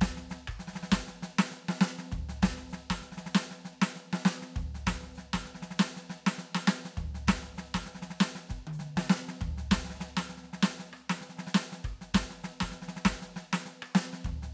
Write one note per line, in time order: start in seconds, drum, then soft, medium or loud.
0.01 kick soft
0.01 snare loud
0.07 kick soft
0.17 snare soft
0.29 snare medium
0.29 hi-hat pedal medium
0.48 kick soft
0.48 cross-stick medium
0.59 snare soft
0.68 snare medium
0.73 snare soft
0.76 snare medium
0.83 snare medium
0.89 kick soft
0.89 snare loud
0.89 hi-hat pedal soft
1.08 snare soft
1.23 snare medium
1.39 snare loud
1.51 snare soft
1.51 hi-hat pedal soft
1.69 snare medium
1.81 snare loud
1.98 snare soft
2.11 kick soft
2.11 floor tom medium
2.11 hi-hat pedal medium
2.18 kick soft
2.21 kick soft
2.29 snare soft
2.43 kick soft
2.43 snare loud
2.57 snare soft
2.69 snare medium
2.69 hi-hat pedal soft
2.90 kick soft
2.90 snare loud
3.02 snare soft
3.12 snare soft
3.17 snare medium
3.26 snare medium
3.34 snare loud
3.34 hi-hat pedal soft
3.51 snare soft
3.65 snare soft
3.82 snare loud
3.95 snare soft
3.95 hi-hat pedal medium
4.13 snare medium
4.25 snare loud
4.42 snare soft
4.56 kick soft
4.56 floor tom medium
4.56 hi-hat pedal soft
4.65 kick soft
4.75 snare soft
4.87 kick soft
4.87 snare loud
4.93 kick soft
5.03 snare soft
5.15 snare soft
5.15 hi-hat pedal medium
5.33 kick soft
5.33 snare loud
5.45 snare soft
5.55 snare soft
5.62 snare medium
5.71 snare soft
5.78 snare loud
5.78 hi-hat pedal soft
5.97 snare soft
6.10 snare medium
6.27 snare loud
6.35 snare medium
6.35 hi-hat pedal soft
6.55 snare loud
6.68 snare loud
6.85 snare soft
6.97 kick soft
6.97 floor tom medium
6.97 hi-hat pedal soft
7.15 snare soft
7.28 kick soft
7.28 snare loud
7.37 kick soft
7.43 snare soft
7.56 snare medium
7.56 hi-hat pedal soft
7.74 kick soft
7.74 snare medium
7.86 snare soft
7.95 snare soft
8.02 snare medium
8.10 snare soft
8.19 snare loud
8.19 hi-hat pedal medium
8.35 snare medium
8.49 kick soft
8.49 snare soft
8.67 open hi-hat soft
8.67 high tom loud
8.73 hi-hat pedal medium
8.79 snare soft
8.96 kick soft
8.96 snare loud
9.10 snare loud
9.28 snare medium
9.41 kick soft
9.41 floor tom loud
9.41 hi-hat pedal soft
9.47 kick soft
9.58 snare soft
9.71 kick soft
9.71 snare loud
9.84 snare soft
9.90 snare soft
9.95 snare soft
10.00 snare medium
10.00 hi-hat pedal soft
10.17 snare loud
10.29 snare soft
10.37 snare soft
10.44 snare soft
10.53 snare medium
10.61 snare loud
10.61 hi-hat pedal soft
10.79 snare soft
10.93 cross-stick medium
11.10 snare loud
11.21 snare soft
11.21 hi-hat pedal soft
11.29 snare soft
11.37 snare soft
11.39 snare medium
11.55 snare loud
11.72 snare soft
11.84 kick soft
11.84 cross-stick medium
11.84 hi-hat pedal soft
11.90 kick soft
11.94 kick soft
12.01 snare soft
12.14 kick soft
12.14 snare loud
12.24 kick soft
12.30 snare soft
12.43 snare medium
12.43 hi-hat pedal medium
12.60 kick soft
12.60 snare medium
12.71 snare soft
12.82 snare soft
12.88 snare medium
12.96 snare medium
13.05 kick soft
13.05 snare loud
13.05 hi-hat pedal soft
13.11 kick soft
13.22 snare soft
13.36 snare medium
13.53 snare loud
13.63 snare soft
13.63 hi-hat pedal soft
13.82 cross-stick medium
13.95 snare loud
14.13 snare soft
14.24 kick soft
14.24 floor tom medium
14.24 hi-hat pedal soft
14.31 kick soft
14.34 kick soft
14.43 snare soft